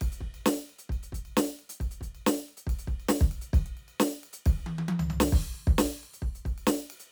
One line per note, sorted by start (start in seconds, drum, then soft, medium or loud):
0.01 kick loud
0.01 ride loud
0.12 closed hi-hat medium
0.21 kick medium
0.34 ride bell medium
0.46 snare loud
0.58 ride soft
0.69 ride bell soft
0.79 closed hi-hat medium
0.89 kick medium
0.89 ride bell soft
1.03 closed hi-hat medium
1.12 closed hi-hat medium
1.12 kick medium
1.25 ride bell soft
1.37 snare loud
1.47 ride bell soft
1.59 ride soft
1.69 closed hi-hat medium
1.80 kick medium
1.80 ride medium
1.91 closed hi-hat medium
2.01 closed hi-hat medium
2.01 kick medium
2.15 ride bell soft
2.27 snare loud
2.48 ride soft
2.57 closed hi-hat medium
2.67 kick medium
2.67 ride medium
2.79 closed hi-hat medium
2.87 kick medium
2.87 ride soft
3.00 ride bell soft
3.09 snare loud
3.20 kick loud
3.20 ride soft
3.31 ride medium
3.41 closed hi-hat medium
3.53 kick loud
3.53 ride bell medium
3.66 closed hi-hat soft
3.77 ride soft
3.88 ride bell soft
4.00 snare loud
4.12 ride bell soft
4.23 ride medium
4.33 closed hi-hat medium
4.46 kick loud
4.46 ride loud
4.58 snare soft
4.66 high tom medium
4.78 high tom loud
4.88 high tom loud
4.99 floor tom loud
5.10 floor tom medium
5.20 snare loud
5.32 kick loud
5.32 crash medium
5.43 closed hi-hat medium
5.54 closed hi-hat soft
5.67 kick loud
5.78 snare loud
5.78 crash medium
6.03 ride soft
6.14 closed hi-hat medium
6.22 kick medium
6.27 ride soft
6.35 closed hi-hat soft
6.45 kick medium
6.45 ride soft
6.58 ride medium
6.67 snare loud
6.79 ride bell soft
6.90 ride medium
7.00 closed hi-hat medium